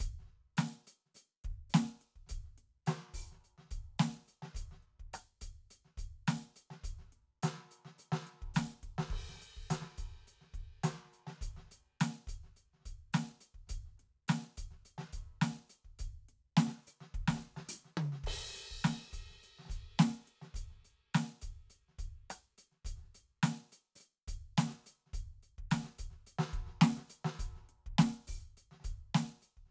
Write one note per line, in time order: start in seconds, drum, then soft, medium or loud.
0.00 closed hi-hat medium
0.00 kick medium
0.05 kick soft
0.10 kick soft
0.19 snare soft
0.25 snare soft
0.58 closed hi-hat medium
0.58 snare medium
0.88 closed hi-hat soft
1.06 snare soft
1.15 closed hi-hat soft
1.15 hi-hat pedal soft
1.45 kick soft
1.45 closed hi-hat soft
1.50 kick soft
1.70 hi-hat pedal soft
1.75 closed hi-hat medium
1.75 snare loud
2.02 closed hi-hat soft
2.16 kick soft
2.27 closed hi-hat medium
2.27 snare soft
2.31 kick soft
2.45 snare soft
2.58 closed hi-hat soft
2.87 closed hi-hat medium
2.87 snare loud
3.14 open hi-hat medium
3.14 kick soft
3.32 snare soft
3.45 closed hi-hat soft
3.58 snare soft
3.65 snare soft
3.71 closed hi-hat medium
3.71 kick soft
3.99 closed hi-hat medium
3.99 snare loud
3.99 hi-hat pedal soft
4.16 snare soft
4.28 closed hi-hat soft
4.43 snare soft
4.55 closed hi-hat medium
4.55 kick soft
4.72 snare soft
4.79 snare soft
4.79 closed hi-hat soft
5.00 kick soft
5.14 closed hi-hat medium
5.14 cross-stick medium
5.42 closed hi-hat medium
5.42 kick soft
5.71 closed hi-hat soft
5.85 snare soft
5.98 closed hi-hat medium
5.98 kick soft
6.28 closed hi-hat medium
6.28 snare medium
6.56 closed hi-hat soft
6.71 snare soft
6.84 closed hi-hat medium
6.84 kick soft
6.99 snare soft
7.06 snare soft
7.13 closed hi-hat soft
7.43 closed hi-hat medium
7.43 snare loud
7.58 snare soft
7.72 closed hi-hat soft
7.85 snare soft
7.99 closed hi-hat soft
7.99 hi-hat pedal soft
8.13 snare medium
8.27 closed hi-hat soft
8.42 kick soft
8.55 closed hi-hat medium
8.55 snare medium
8.55 hi-hat pedal medium
8.70 snare soft
8.83 kick soft
8.83 closed hi-hat soft
8.99 snare medium
9.10 kick soft
9.10 crash medium
9.17 kick soft
9.19 kick soft
9.29 snare soft
9.36 snare soft
9.42 closed hi-hat medium
9.57 kick soft
9.71 closed hi-hat loud
9.71 snare medium
9.82 snare soft
9.98 closed hi-hat medium
9.98 kick soft
10.06 kick soft
10.15 snare soft
10.28 closed hi-hat soft
10.41 snare soft
10.47 snare soft
10.54 kick soft
10.54 closed hi-hat soft
10.84 closed hi-hat loud
10.84 snare loud
11.14 closed hi-hat soft
11.27 snare soft
11.42 closed hi-hat medium
11.42 kick soft
11.57 snare soft
11.66 snare soft
11.72 closed hi-hat soft
12.01 closed hi-hat loud
12.01 snare medium
12.28 closed hi-hat medium
12.28 kick soft
12.44 snare soft
12.57 closed hi-hat soft
12.74 snare soft
12.81 snare soft
12.86 closed hi-hat medium
12.86 kick soft
13.13 closed hi-hat medium
13.13 snare medium
13.13 hi-hat pedal soft
13.28 snare soft
13.41 closed hi-hat soft
13.55 kick soft
13.68 closed hi-hat medium
13.68 kick soft
13.68 snare soft
13.86 snare soft
13.98 snare soft
13.98 closed hi-hat soft
14.01 snare soft
14.29 closed hi-hat medium
14.29 snare loud
14.42 snare soft
14.58 closed hi-hat medium
14.58 kick soft
14.71 snare soft
14.86 closed hi-hat soft
14.99 snare medium
15.13 closed hi-hat medium
15.13 kick soft
15.42 closed hi-hat medium
15.42 snare loud
15.55 snare soft
15.70 closed hi-hat soft
15.85 kick soft
15.85 snare soft
15.99 closed hi-hat medium
15.99 kick soft
16.29 closed hi-hat soft
16.57 closed hi-hat medium
16.57 snare loud
16.67 snare soft
16.88 open hi-hat medium
16.88 hi-hat pedal medium
17.01 snare soft
17.15 kick soft
17.15 closed hi-hat soft
17.20 kick soft
17.23 kick soft
17.28 snare loud
17.35 snare soft
17.41 closed hi-hat soft
17.57 snare medium
17.69 closed hi-hat loud
17.85 snare soft
17.98 high tom loud
18.13 snare soft
18.24 kick soft
18.24 crash loud
18.30 kick soft
18.33 kick soft
18.48 snare soft
18.56 closed hi-hat soft
18.71 kick soft
18.85 open hi-hat medium
18.85 snare loud
18.98 snare soft
19.13 closed hi-hat medium
19.13 kick soft
19.30 snare soft
19.44 closed hi-hat soft
19.59 snare soft
19.66 snare soft
19.70 closed hi-hat soft
19.70 kick soft
19.99 open hi-hat medium
19.99 snare loud
20.28 closed hi-hat soft
20.42 snare soft
20.55 closed hi-hat medium
20.55 kick soft
20.71 snare soft
20.81 closed hi-hat soft
20.81 snare soft
21.15 closed hi-hat medium
21.15 snare loud
21.42 closed hi-hat medium
21.42 kick soft
21.70 closed hi-hat soft
21.89 snare soft
21.93 snare soft
21.99 closed hi-hat medium
21.99 kick soft
21.99 snare soft
22.30 closed hi-hat medium
22.30 cross-stick medium
22.58 closed hi-hat soft
22.72 snare soft
22.85 closed hi-hat medium
22.85 kick soft
22.97 snare soft
23.03 snare soft
23.15 closed hi-hat soft
23.43 closed hi-hat medium
23.43 snare loud
23.73 closed hi-hat soft
23.96 hi-hat pedal medium
24.00 closed hi-hat soft
24.28 closed hi-hat medium
24.28 kick soft
24.58 closed hi-hat medium
24.58 snare loud
24.68 snare soft
24.87 closed hi-hat soft
25.07 snare soft
25.14 closed hi-hat medium
25.14 kick soft
25.33 kick soft
25.43 closed hi-hat soft
25.59 kick soft
25.71 closed hi-hat medium
25.71 snare loud
25.84 snare soft
25.99 open hi-hat medium
25.99 kick soft
26.11 snare soft
26.27 closed hi-hat soft
26.39 snare loud
26.54 kick soft
26.54 closed hi-hat soft
26.60 kick soft
26.67 snare soft
26.82 snare loud
26.97 snare soft
27.10 closed hi-hat medium
27.25 snare medium
27.40 closed hi-hat medium
27.40 kick soft
27.56 snare soft
27.63 snare soft
27.69 closed hi-hat soft
27.87 kick soft
27.99 open hi-hat medium
27.99 snare loud
28.28 open hi-hat medium
28.28 kick soft
28.37 snare soft
28.58 closed hi-hat soft
28.72 snare soft
28.80 snare soft
28.85 closed hi-hat medium
28.85 kick soft
28.91 kick soft
29.15 open hi-hat medium
29.15 snare loud
29.43 closed hi-hat soft
29.57 kick soft
29.66 snare soft